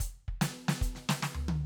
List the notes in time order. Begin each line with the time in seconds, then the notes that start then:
0.00 closed hi-hat, kick
0.28 kick
0.41 closed hi-hat, snare
0.68 snare
0.81 closed hi-hat, kick
0.95 snare
1.09 snare
1.22 snare
1.35 floor tom
1.48 high tom